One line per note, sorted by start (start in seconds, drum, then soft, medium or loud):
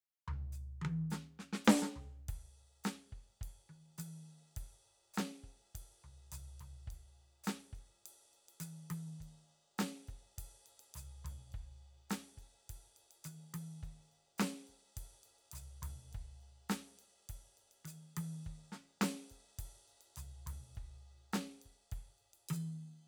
0.28 floor tom medium
0.52 hi-hat pedal soft
0.81 high tom medium
0.85 high tom loud
1.10 snare medium
1.10 hi-hat pedal soft
1.39 snare soft
1.53 snare medium
1.64 snare loud
1.64 hi-hat pedal medium
1.82 snare medium
1.96 floor tom soft
2.28 kick soft
2.28 ride medium
2.84 snare medium
2.84 hi-hat pedal medium
2.84 ride soft
3.12 kick soft
3.41 kick soft
3.41 ride soft
3.69 high tom soft
3.98 hi-hat pedal medium
3.98 high tom medium
3.98 ride medium
4.56 kick soft
4.56 ride medium
5.13 snare medium
5.13 hi-hat pedal medium
5.19 ride medium
5.43 kick soft
5.75 kick soft
5.75 ride medium
6.04 floor tom soft
6.32 floor tom soft
6.32 hi-hat pedal medium
6.32 ride medium
6.59 floor tom soft
6.59 ride soft
6.87 kick soft
6.87 ride soft
7.44 snare medium
7.44 hi-hat pedal medium
7.44 ride medium
7.73 kick soft
7.73 ride soft
8.06 ride medium
8.33 ride soft
8.48 ride soft
8.60 hi-hat pedal medium
8.60 high tom medium
8.60 ride medium
8.90 high tom medium
8.90 ride medium
9.20 kick soft
9.20 ride soft
9.78 snare medium
9.78 hi-hat pedal medium
9.78 ride medium
10.07 kick soft
10.07 ride soft
10.38 kick soft
10.38 ride medium
10.66 ride soft
10.79 ride soft
10.94 floor tom soft
10.94 hi-hat pedal medium
10.94 ride soft
11.24 floor tom medium
11.24 ride soft
11.52 kick soft
11.52 ride soft
12.09 snare medium
12.09 hi-hat pedal medium
12.09 ride medium
12.37 kick soft
12.37 ride soft
12.69 kick soft
12.69 ride medium
12.96 ride soft
13.11 ride soft
13.24 hi-hat pedal medium
13.24 high tom soft
13.24 ride soft
13.54 high tom medium
13.54 ride medium
13.83 kick soft
13.83 ride soft
14.11 ride soft
14.38 snare medium
14.38 hi-hat pedal medium
14.38 ride medium
14.67 kick soft
14.67 ride soft
14.97 kick soft
14.97 ride medium
15.23 ride soft
15.38 ride soft
15.51 floor tom soft
15.51 hi-hat pedal medium
15.51 ride medium
15.82 floor tom medium
15.82 ride medium
16.13 kick soft
16.13 ride soft
16.40 ride soft
16.69 snare medium
16.69 hi-hat pedal medium
16.69 ride medium
16.99 ride soft
17.29 kick soft
17.29 ride medium
17.57 ride soft
17.71 ride soft
17.84 hi-hat pedal medium
17.84 high tom soft
17.84 ride soft
18.17 high tom medium
18.17 ride medium
18.44 kick soft
18.44 ride soft
18.72 snare soft
18.72 ride soft
19.01 snare medium
19.01 hi-hat pedal medium
19.01 ride medium
19.30 kick soft
19.30 ride soft
19.58 kick soft
19.58 ride medium
19.87 ride soft
20.01 ride soft
20.16 floor tom soft
20.16 hi-hat pedal medium
20.16 ride soft
20.46 floor tom medium
20.46 ride medium
20.75 kick soft
20.75 ride soft
21.32 snare medium
21.32 hi-hat pedal medium
21.32 ride medium
21.61 kick soft
21.61 ride soft
21.91 kick soft
21.91 ride soft
22.18 ride soft
22.33 ride soft
22.49 hi-hat pedal medium
22.49 high tom medium
22.49 ride bell medium